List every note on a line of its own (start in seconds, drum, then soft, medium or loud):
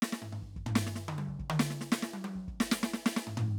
0.02 snare loud
0.12 snare medium
0.22 floor tom medium
0.32 floor tom medium
0.42 kick soft
0.56 kick soft
0.66 floor tom loud
0.75 snare loud
0.86 snare medium
0.96 snare medium
1.08 mid tom loud
1.18 high tom medium
1.28 kick soft
1.39 kick soft
1.50 mid tom loud
1.59 snare loud
1.70 snare medium
1.81 snare medium
1.92 snare loud
2.02 snare medium
2.13 high tom medium
2.24 high tom loud
2.35 kick soft
2.48 kick soft
2.60 snare loud
2.71 snare loud
2.83 snare loud
2.93 snare medium
3.06 snare loud
3.16 snare loud
3.27 floor tom medium
3.37 floor tom loud